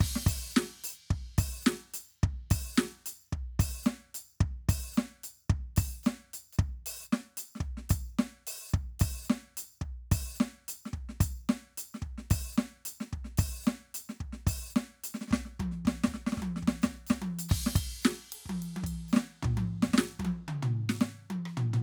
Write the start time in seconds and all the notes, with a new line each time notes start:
0.01 kick, crash
0.16 snare
0.27 kick, percussion
0.52 percussion
0.57 snare
0.84 percussion
0.89 percussion
1.11 kick
1.38 kick, percussion
1.63 snare, percussion
1.94 percussion
2.24 kick
2.51 kick, percussion
2.76 snare, percussion
3.06 percussion
3.33 kick
3.60 kick, percussion
3.84 snare, percussion
4.15 percussion
4.41 kick
4.69 kick, percussion
4.94 snare, percussion
5.24 percussion
5.50 kick
5.77 kick, percussion
6.04 snare, percussion
6.34 percussion
6.53 percussion
6.59 kick
6.86 percussion
7.04 percussion
7.13 snare
7.38 percussion
7.56 snare
7.61 kick
7.78 snare
7.90 kick, percussion
8.19 snare
8.47 percussion
8.70 percussion
8.74 kick
9.00 kick, percussion
9.25 percussion
9.30 snare
9.57 percussion
9.82 kick
10.12 kick, percussion
10.36 percussion
10.41 snare
10.69 percussion
10.86 snare
10.94 kick
11.09 snare
11.21 kick, percussion
11.50 snare
11.78 percussion
11.95 snare
12.02 kick
12.18 snare
12.31 kick, percussion
12.53 percussion
12.58 snare
12.86 percussion
13.01 snare
13.13 kick
13.25 snare
13.38 kick, percussion
13.64 snare, percussion
13.95 percussion
14.10 snare
14.21 kick
14.33 snare
14.47 kick, percussion
14.71 percussion
14.76 snare
15.04 percussion
15.15 snare
15.21 snare
15.28 kick, snare
15.33 snare
15.46 snare
15.53 snare
15.60 kick, high tom
15.72 snare
15.85 kick, snare
16.04 kick, snare
16.27 snare
16.33 snare
16.38 kick, snare
16.42 high tom
16.56 snare
16.63 kick
16.68 snare
16.82 kick, snare, percussion
16.94 snare
17.07 kick, snare, percussion
17.22 high tom
17.39 percussion
17.49 kick, crash
17.67 snare
17.76 kick, ride bell
18.03 snare, percussion
18.33 ride
18.46 kick, high tom
18.63 ride
18.77 high tom
18.84 kick, ride bell
19.09 percussion
19.13 snare
19.17 snare
19.43 kick, floor tom
19.57 cross-stick, high tom
19.83 snare
19.88 kick
19.94 snare
19.98 snare
20.20 kick, high tom
20.25 high tom
20.49 mid tom
20.63 floor tom
20.90 snare
21.01 snare
21.31 high tom
21.46 high tom
21.58 floor tom
21.74 floor tom